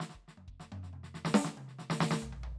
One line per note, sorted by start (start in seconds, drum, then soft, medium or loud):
0.00 snare medium
0.09 snare soft
0.15 kick soft
0.28 snare soft
0.37 mid tom soft
0.48 kick soft
0.60 snare soft
0.72 mid tom medium
0.83 snare soft
0.93 high tom soft
1.03 snare soft
1.14 snare soft
1.25 snare medium
1.34 snare loud
1.44 snare medium
1.57 high tom medium
1.68 snare soft
1.79 snare soft
1.90 snare loud
2.00 snare loud
2.11 snare loud
2.22 floor tom medium
2.32 floor tom medium
2.43 floor tom soft